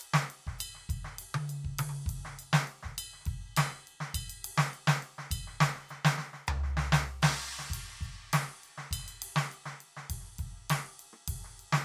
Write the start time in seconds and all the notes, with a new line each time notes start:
0.01 ride
0.14 snare
0.30 ride
0.47 kick, snare
0.58 hi-hat pedal, ride bell
0.75 snare
0.89 kick, ride bell
0.96 kick
0.99 kick
1.04 snare
1.18 hi-hat pedal, ride
1.34 high tom
1.49 ride bell
1.64 kick
1.78 hi-hat pedal, high tom, ride
1.89 high tom
2.06 kick, ride
2.16 kick
2.25 snare
2.39 hi-hat pedal, ride bell
2.53 snare
2.67 ride
2.83 kick, snare
2.98 hi-hat pedal, ride bell
3.13 snare
3.21 snare
3.26 kick, ride
3.33 kick
3.56 snare, hi-hat pedal, ride bell
3.70 snare
3.87 ride
4.00 snare
4.14 kick, hi-hat pedal, ride bell
4.23 kick
4.30 ride bell
4.44 ride
4.58 snare
4.63 cross-stick
4.73 hi-hat pedal, ride
4.87 snare
4.94 snare
5.02 ride
5.18 snare
5.31 kick, hi-hat pedal, ride bell
5.37 kick
5.40 kick
5.47 snare
5.60 snare
5.75 snare
5.89 snare, hi-hat pedal
6.05 snare
6.17 snare, hi-hat pedal
6.33 snare
6.47 hi-hat pedal, floor tom
6.63 snare
6.77 snare
6.81 hi-hat pedal
6.92 snare
7.22 snare, crash
7.29 cross-stick
7.59 snare
7.69 kick, hi-hat pedal
7.74 kick, ride
7.89 snare
7.92 snare
8.01 kick, hi-hat pedal, ride
8.07 kick
8.33 snare, hi-hat pedal, ride
8.42 snare
8.62 hi-hat pedal, ride
8.78 snare
8.91 kick, snare, hi-hat pedal, ride bell
8.99 kick, snare
9.03 snare
9.06 snare, ride bell
9.08 snare
9.22 ride
9.36 snare
9.52 hi-hat pedal, ride
9.66 snare
9.80 ride
9.97 snare
10.10 kick, hi-hat pedal, ride
10.18 kick, snare
10.38 kick, ride
10.70 snare, hi-hat pedal, ride
10.78 cross-stick
10.98 hi-hat pedal, ride
11.13 cross-stick
11.28 kick, hi-hat pedal, ride
11.37 kick
11.44 snare
11.56 hi-hat pedal, ride
11.73 snare
11.77 cross-stick